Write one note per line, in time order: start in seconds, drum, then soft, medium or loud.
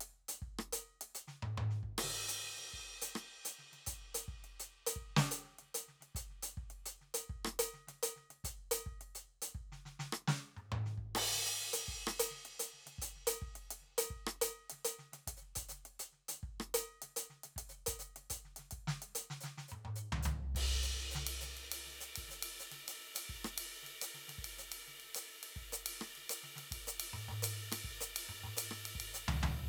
0.01 closed hi-hat medium
0.29 closed hi-hat medium
0.42 kick soft
0.59 cross-stick medium
0.73 closed hi-hat loud
1.01 closed hi-hat medium
1.15 closed hi-hat medium
1.28 snare soft
1.43 high tom medium
1.58 high tom medium
1.71 snare soft
1.83 kick soft
1.98 cross-stick medium
1.98 crash medium
2.04 snare soft
2.29 closed hi-hat medium
2.42 snare soft
2.58 snare soft
2.58 closed hi-hat soft
2.73 kick soft
2.73 snare soft
3.02 closed hi-hat loud
3.16 cross-stick medium
3.45 closed hi-hat medium
3.59 snare soft
3.73 snare soft
3.73 closed hi-hat soft
3.87 closed hi-hat medium
3.87 kick soft
4.15 closed hi-hat loud
4.28 kick soft
4.44 closed hi-hat soft
4.60 closed hi-hat medium
4.87 closed hi-hat loud
4.96 kick soft
5.17 snare medium
5.31 closed hi-hat loud
5.45 snare soft
5.59 snare soft
5.59 closed hi-hat soft
5.75 closed hi-hat loud
5.88 snare soft
6.01 snare soft
6.01 closed hi-hat soft
6.15 closed hi-hat medium
6.15 kick soft
6.30 snare soft
6.43 closed hi-hat medium
6.57 kick soft
6.70 closed hi-hat soft
6.86 closed hi-hat medium
7.01 snare soft
7.14 closed hi-hat loud
7.30 kick soft
7.45 cross-stick medium
7.48 cross-stick medium
7.59 closed hi-hat loud
7.74 snare soft
7.88 snare soft
7.88 closed hi-hat soft
8.03 closed hi-hat loud
8.16 snare soft
8.30 snare soft
8.30 closed hi-hat soft
8.44 closed hi-hat medium
8.44 kick soft
8.72 closed hi-hat loud
8.87 kick soft
9.01 closed hi-hat soft
9.15 closed hi-hat medium
9.42 closed hi-hat loud
9.55 kick soft
9.72 snare soft
9.86 snare soft
10.00 snare medium
10.13 cross-stick medium
10.28 snare medium
10.41 snare soft
10.57 closed hi-hat soft
10.57 high tom medium
10.72 high tom medium
10.86 snare soft
10.98 kick soft
11.15 cross-stick medium
11.15 crash loud
11.32 snare soft
11.34 snare soft
11.46 closed hi-hat medium
11.61 snare soft
11.74 closed hi-hat loud
11.88 kick soft
12.07 cross-stick medium
12.10 cross-stick soft
12.20 closed hi-hat loud
12.31 snare soft
12.45 snare soft
12.45 closed hi-hat soft
12.60 closed hi-hat loud
12.74 snare soft
12.86 snare soft
12.86 closed hi-hat soft
12.99 closed hi-hat medium
12.99 kick soft
13.16 snare soft
13.27 closed hi-hat loud
13.42 kick soft
13.56 closed hi-hat soft
13.71 closed hi-hat medium
13.82 snare soft
13.98 closed hi-hat loud
14.11 kick soft
14.27 cross-stick medium
14.42 closed hi-hat loud
14.70 snare soft
14.70 closed hi-hat medium
14.85 closed hi-hat loud
14.99 snare soft
15.13 snare soft
15.13 closed hi-hat soft
15.27 kick soft
15.27 open hi-hat medium
15.37 hi-hat pedal soft
15.42 snare soft
15.56 open hi-hat medium
15.56 kick soft
15.69 snare soft
15.69 hi-hat pedal medium
15.85 closed hi-hat soft
16.00 closed hi-hat medium
16.13 snare soft
16.29 closed hi-hat medium
16.29 snare soft
16.43 kick soft
16.60 cross-stick medium
16.75 closed hi-hat loud
17.02 snare soft
17.02 closed hi-hat medium
17.17 closed hi-hat loud
17.30 snare soft
17.44 snare soft
17.44 closed hi-hat medium
17.56 kick soft
17.56 open hi-hat medium
17.69 snare soft
17.69 hi-hat pedal soft
17.87 open hi-hat loud
17.87 kick soft
17.99 snare soft
17.99 hi-hat pedal medium
18.16 snare soft
18.16 closed hi-hat soft
18.30 closed hi-hat medium
18.30 kick soft
18.45 snare soft
18.57 snare soft
18.57 closed hi-hat medium
18.71 kick soft
18.71 closed hi-hat medium
18.88 snare medium
19.02 closed hi-hat medium
19.15 closed hi-hat loud
19.30 snare soft
19.41 snare soft
19.41 hi-hat pedal medium
19.58 snare soft
19.69 hi-hat pedal soft
19.69 high tom medium
19.85 high tom medium
19.96 hi-hat pedal medium
20.12 floor tom loud
20.23 floor tom loud
20.23 hi-hat pedal medium
20.55 kick medium
20.55 crash medium
20.55 ride loud
20.83 hi-hat pedal medium
21.12 snare medium
21.12 hi-hat pedal medium
21.27 ride loud
21.41 snare soft
21.41 hi-hat pedal medium
21.55 snare soft
21.55 ride medium
21.72 hi-hat pedal medium
21.72 ride loud
21.86 snare soft
22.01 hi-hat pedal medium
22.01 ride soft
22.16 kick soft
22.16 ride loud
22.28 snare soft
22.28 hi-hat pedal medium
22.43 ride loud
22.60 hi-hat pedal medium
22.72 snare soft
22.72 ride medium
22.88 hi-hat pedal medium
22.88 ride loud
23.15 hi-hat pedal medium
23.15 ride loud
23.30 kick soft
23.45 cross-stick medium
23.45 hi-hat pedal medium
23.58 ride loud
23.83 snare soft
23.83 ride medium
24.02 hi-hat pedal loud
24.02 ride loud
24.15 snare soft
24.28 snare soft
24.28 ride medium
24.39 kick soft
24.45 ride medium
24.57 snare soft
24.57 hi-hat pedal medium
24.72 ride loud
24.88 snare soft
25.00 snare soft
25.00 ride soft
25.15 hi-hat pedal loud
25.15 ride loud
25.43 ride medium
25.56 kick soft
25.73 hi-hat pedal loud
25.86 ride loud
26.01 cross-stick medium
26.16 snare soft
26.16 ride soft
26.30 hi-hat pedal loud
26.30 ride loud
26.44 snare soft
26.56 snare soft
26.56 ride medium
26.72 kick soft
26.72 ride medium
26.87 hi-hat pedal loud
27.00 ride loud
27.14 high tom medium
27.29 high tom medium
27.43 hi-hat pedal loud
27.43 ride loud
27.72 cross-stick medium
27.72 ride loud
27.85 kick soft
28.01 hi-hat pedal loud
28.16 ride loud
28.29 high tom medium
28.44 high tom medium
28.57 hi-hat pedal loud
28.57 ride loud
28.71 cross-stick medium
28.86 ride medium
28.95 kick soft
29.00 ride loud
29.14 hi-hat pedal medium
29.28 floor tom loud
29.43 floor tom loud